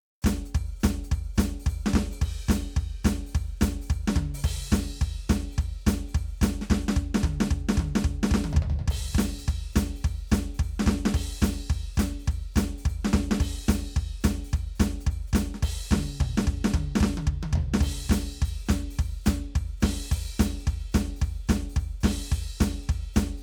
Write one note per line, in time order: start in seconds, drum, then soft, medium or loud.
0.22 kick loud
0.22 snare loud
0.22 hi-hat pedal medium
0.26 closed hi-hat loud
0.45 closed hi-hat soft
0.54 open hi-hat medium
0.54 kick loud
0.80 closed hi-hat loud
0.80 snare loud
0.80 hi-hat pedal medium
0.84 kick loud
1.04 open hi-hat medium
1.11 open hi-hat medium
1.11 kick loud
1.35 closed hi-hat loud
1.35 kick loud
1.35 snare loud
1.35 hi-hat pedal medium
1.59 open hi-hat medium
1.66 open hi-hat medium
1.66 kick loud
1.86 snare loud
1.86 hi-hat pedal soft
1.93 kick loud
1.93 snare loud
2.11 open hi-hat medium
2.21 kick loud
2.21 crash medium
2.47 closed hi-hat loud
2.47 kick loud
2.47 snare loud
2.47 hi-hat pedal medium
2.76 open hi-hat soft
2.76 kick loud
3.03 closed hi-hat loud
3.03 kick loud
3.03 snare loud
3.03 hi-hat pedal soft
3.26 open hi-hat medium
3.34 open hi-hat medium
3.34 kick loud
3.60 closed hi-hat loud
3.60 kick loud
3.60 snare loud
3.60 hi-hat pedal soft
3.81 open hi-hat medium
3.86 kick loud
3.86 snare soft
3.90 open hi-hat medium
4.07 snare loud
4.07 hi-hat pedal soft
4.16 kick loud
4.16 high tom loud
4.34 open hi-hat loud
4.44 kick loud
4.44 crash loud
4.71 closed hi-hat loud
4.71 kick loud
4.71 snare loud
4.71 hi-hat pedal soft
4.93 open hi-hat soft
5.00 open hi-hat medium
5.00 kick loud
5.29 closed hi-hat medium
5.29 kick loud
5.29 snare loud
5.29 hi-hat pedal soft
5.51 open hi-hat medium
5.58 open hi-hat medium
5.58 kick loud
5.86 closed hi-hat loud
5.86 kick loud
5.86 snare loud
5.86 hi-hat pedal soft
6.07 open hi-hat medium
6.14 open hi-hat medium
6.14 kick loud
6.41 closed hi-hat loud
6.41 kick loud
6.41 snare loud
6.41 hi-hat pedal soft
6.61 snare medium
6.66 kick loud
6.66 hi-hat pedal soft
6.71 snare loud
6.88 snare loud
6.88 hi-hat pedal soft
6.96 kick loud
7.14 snare loud
7.20 kick loud
7.20 hi-hat pedal soft
7.24 high tom loud
7.40 snare loud
7.47 kick loud
7.47 hi-hat pedal soft
7.69 snare loud
7.73 kick loud
7.73 hi-hat pedal soft
7.79 high tom loud
7.95 snare loud
8.00 kick loud
8.00 hi-hat pedal soft
8.23 snare loud
8.23 hi-hat pedal soft
8.31 kick loud
8.31 snare loud
8.44 high tom loud
8.50 floor tom loud
8.50 hi-hat pedal soft
8.56 kick loud
8.62 floor tom medium
8.70 floor tom loud
8.79 kick soft
8.79 floor tom medium
8.88 kick loud
8.88 crash loud
9.13 kick loud
9.13 hi-hat pedal medium
9.18 closed hi-hat loud
9.18 snare loud
9.39 open hi-hat medium
9.48 open hi-hat medium
9.48 kick loud
9.72 kick loud
9.72 snare loud
9.72 hi-hat pedal soft
9.77 closed hi-hat loud
9.96 open hi-hat medium
10.04 open hi-hat medium
10.04 kick loud
10.29 kick loud
10.29 snare loud
10.29 hi-hat pedal soft
10.33 closed hi-hat loud
10.54 open hi-hat medium
10.59 open hi-hat medium
10.59 kick loud
10.79 snare loud
10.79 hi-hat pedal soft
10.86 kick loud
10.86 snare loud
11.05 snare loud
11.14 kick loud
11.14 crash loud
11.38 kick loud
11.38 hi-hat pedal soft
11.42 closed hi-hat loud
11.42 snare loud
11.70 open hi-hat medium
11.70 kick loud
11.95 kick loud
11.95 hi-hat pedal soft
11.99 closed hi-hat loud
11.99 snare loud
12.19 open hi-hat soft
12.27 open hi-hat medium
12.27 kick loud
12.54 closed hi-hat loud
12.54 kick loud
12.54 snare loud
12.54 hi-hat pedal soft
12.78 open hi-hat medium
12.85 open hi-hat medium
12.85 kick loud
13.04 snare loud
13.04 hi-hat pedal soft
13.13 kick loud
13.13 snare loud
13.31 snare loud
13.40 kick loud
13.40 crash loud
13.66 closed hi-hat loud
13.66 kick loud
13.66 snare loud
13.66 hi-hat pedal soft
13.96 open hi-hat soft
13.96 kick loud
14.21 closed hi-hat loud
14.21 kick loud
14.21 snare loud
14.21 hi-hat pedal soft
14.44 open hi-hat medium
14.53 open hi-hat medium
14.53 kick loud
14.75 hi-hat pedal soft
14.80 closed hi-hat loud
14.80 kick loud
14.80 snare loud
15.00 closed hi-hat medium
15.06 open hi-hat medium
15.06 kick loud
15.27 hi-hat pedal soft
15.33 closed hi-hat loud
15.33 kick loud
15.33 snare loud
15.54 snare medium
15.62 kick loud
15.62 crash loud
15.87 hi-hat pedal soft
15.91 kick loud
15.91 snare loud
15.91 high tom loud
16.20 kick loud
16.20 mid tom loud
16.37 snare loud
16.37 hi-hat pedal soft
16.47 kick loud
16.64 snare loud
16.73 kick loud
16.73 high tom loud
16.95 snare loud
16.95 hi-hat pedal soft
17.00 kick loud
17.00 snare loud
17.17 high tom loud
17.27 kick loud
17.43 high tom loud
17.53 kick loud
17.53 floor tom loud
17.74 snare loud
17.80 kick loud
17.80 crash loud
18.09 closed hi-hat loud
18.09 kick loud
18.09 snare loud
18.09 hi-hat pedal medium
18.30 open hi-hat soft
18.42 kick loud
18.42 open hi-hat medium
18.66 kick loud
18.66 snare loud
18.66 hi-hat pedal medium
18.70 closed hi-hat loud
18.90 open hi-hat medium
18.99 open hi-hat medium
18.99 kick loud
19.24 closed hi-hat loud
19.24 kick loud
19.24 snare loud
19.24 hi-hat pedal soft
19.55 open hi-hat medium
19.55 kick loud
19.80 kick loud
19.80 snare loud
19.80 hi-hat pedal medium
19.80 crash loud
20.11 open hi-hat loud
20.11 kick loud
20.37 closed hi-hat loud
20.37 kick loud
20.37 snare loud
20.37 hi-hat pedal medium
20.59 open hi-hat soft
20.67 open hi-hat medium
20.67 kick loud
20.92 closed hi-hat loud
20.92 kick loud
20.92 snare loud
20.92 hi-hat pedal medium
21.16 open hi-hat medium
21.21 open hi-hat medium
21.21 kick loud
21.47 closed hi-hat loud
21.47 kick loud
21.47 snare loud
21.47 hi-hat pedal medium
21.69 open hi-hat medium
21.76 open hi-hat medium
21.76 kick loud
22.00 kick loud
22.00 snare loud
22.00 hi-hat pedal medium
22.00 crash loud
22.32 open hi-hat medium
22.32 kick loud
22.59 closed hi-hat loud
22.59 kick loud
22.59 snare loud
22.59 hi-hat pedal medium
22.82 open hi-hat soft
22.89 open hi-hat medium
22.89 kick loud
23.14 closed hi-hat loud
23.14 kick loud
23.14 snare loud
23.14 hi-hat pedal soft
23.37 open hi-hat soft